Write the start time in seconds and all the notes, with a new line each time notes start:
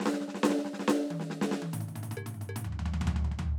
0.00 snare
0.06 snare
0.13 snare
0.20 snare
0.28 snare
0.34 snare
0.43 snare
0.49 snare
0.58 snare
0.65 snare
0.73 snare
0.79 snare
0.88 snare
1.10 high tom
1.20 snare
1.30 snare
1.41 snare
1.51 snare
1.62 high tom
1.73 mid tom
1.78 mid tom, ride
1.88 mid tom
1.95 mid tom
2.03 mid tom
2.11 mid tom
2.17 percussion
2.26 mid tom
2.34 mid tom
2.41 mid tom
2.49 percussion
2.56 mid tom
2.64 floor tom
2.72 floor tom
2.79 floor tom
2.85 floor tom
2.93 floor tom
3.01 floor tom
3.07 floor tom
3.16 floor tom
3.24 floor tom
3.31 floor tom
3.39 floor tom